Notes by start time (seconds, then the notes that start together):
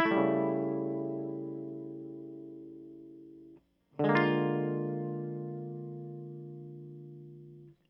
0.00 E4
0.06 A3
0.12 G3
0.18 C#3
4.00 D3
4.04 G#3
4.09 A#3
4.16 F4